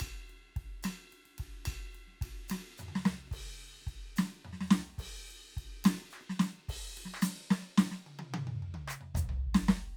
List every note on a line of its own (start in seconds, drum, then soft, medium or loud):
0.01 kick soft
0.01 ride bell loud
0.07 kick soft
0.27 hi-hat pedal soft
0.27 ride soft
0.57 kick soft
0.57 ride medium
0.84 snare medium
0.84 hi-hat pedal medium
0.84 ride bell loud
1.11 hi-hat pedal soft
1.11 ride medium
1.26 ride soft
1.39 kick soft
1.39 ride medium
1.66 kick soft
1.66 ride bell loud
1.74 kick soft
1.92 hi-hat pedal soft
1.92 ride medium
2.08 snare soft
2.14 snare soft
2.16 snare soft
2.22 kick soft
2.22 ride medium
2.28 kick soft
2.49 snare medium
2.49 hi-hat pedal medium
2.49 ride loud
2.60 snare soft
2.79 hi-hat pedal medium
2.79 mid tom medium
2.89 high tom medium
2.96 snare medium
3.28 kick soft
3.28 cross-stick soft
3.34 crash medium
3.39 kick soft
3.82 cross-stick soft
3.87 kick soft
3.87 ride soft
3.95 kick soft
4.17 snare loud
4.17 hi-hat pedal medium
4.17 ride medium
4.30 snare soft
4.45 mid tom medium
4.54 snare soft
4.61 snare medium
4.67 hi-hat pedal soft
4.72 snare loud
4.80 snare soft
4.99 kick soft
4.99 snare soft
4.99 crash medium
5.05 kick soft
5.27 hi-hat pedal soft
5.27 ride medium
5.52 snare soft
5.57 kick soft
5.57 ride medium
5.85 snare loud
5.85 hi-hat pedal medium
5.85 ride loud
5.96 snare soft
6.11 percussion medium
6.11 hi-hat pedal soft
6.22 cross-stick soft
6.30 snare medium
6.40 snare loud
6.40 hi-hat pedal medium
6.69 kick soft
6.69 snare soft
6.69 crash medium
6.98 ride medium
7.06 snare soft
7.15 percussion medium
7.22 snare loud
7.22 hi-hat pedal loud
7.51 snare loud
7.63 snare soft
7.78 snare loud
7.92 snare medium
8.07 high tom medium
8.20 high tom medium
8.35 high tom loud
8.48 high tom medium
8.63 high tom soft
8.75 high tom medium
8.89 percussion loud
8.89 hi-hat pedal loud
9.02 mid tom medium
9.15 kick soft
9.15 hi-hat pedal loud
9.15 floor tom loud
9.30 floor tom medium
9.43 kick soft
9.55 snare loud
9.69 kick soft
9.69 snare loud